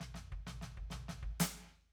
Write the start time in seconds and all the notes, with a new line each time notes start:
0.00 snare, floor tom
0.14 snare, floor tom
0.32 kick
0.47 snare, floor tom
0.61 snare, floor tom
0.77 kick
0.90 snare, floor tom
1.08 snare, floor tom
1.23 kick
1.40 open hi-hat, snare